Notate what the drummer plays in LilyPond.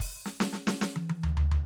\new DrumStaff \drummode { \time 4/4 \tempo 4 = 144 \tuplet 3/2 { <bd hho>8 r8 sn8 sn8 sn8 sn8 sn8 tommh8 tommh8 tomfh8 tomfh8 tomfh8 } | }